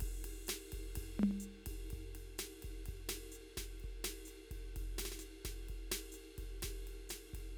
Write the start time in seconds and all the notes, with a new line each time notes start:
0.01 kick, ride
0.08 kick
0.25 ride
0.48 snare, hi-hat pedal, ride
0.73 kick, ride
0.79 kick
0.96 kick, ride
1.03 kick
1.20 mid tom
1.24 mid tom
1.32 mid tom
1.41 hi-hat pedal
1.67 kick, ride
1.73 kick
1.91 kick, ride
1.99 kick
2.16 ride
2.39 snare, hi-hat pedal, ride
2.63 kick, ride
2.70 kick
2.86 kick, ride
2.94 kick
3.09 snare, ride
3.32 hi-hat pedal, ride
3.58 kick, snare, ride
3.80 ride
3.85 kick
4.05 snare, ride
4.26 hi-hat pedal, ride
4.52 kick, ride
4.57 kick
4.66 snare
4.70 snare
4.77 kick, ride
4.82 kick
4.99 snare, ride
5.06 snare
5.12 snare
5.19 snare, hi-hat pedal
5.29 snare
5.45 kick, snare, ride
5.51 kick
5.69 kick, ride
5.75 kick
5.92 snare, ride
6.13 hi-hat pedal, ride
6.18 snare
6.39 kick, ride
6.44 kick
6.63 kick, snare, ride
6.70 kick
6.88 ride
7.10 snare, hi-hat pedal, ride
7.27 snare
7.34 kick, ride
7.39 kick
7.45 snare